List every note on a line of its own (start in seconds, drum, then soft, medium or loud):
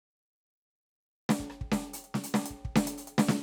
1.29 snare loud
1.40 kick soft
1.50 cross-stick medium
1.61 kick soft
1.72 snare loud
1.87 closed hi-hat soft
1.94 closed hi-hat loud
2.04 closed hi-hat medium
2.14 snare medium
2.24 closed hi-hat loud
2.34 snare loud
2.46 closed hi-hat loud
2.51 kick soft
2.65 kick soft
2.76 snare loud
2.87 closed hi-hat loud
2.98 closed hi-hat medium
3.07 closed hi-hat medium
3.18 snare loud
3.29 snare loud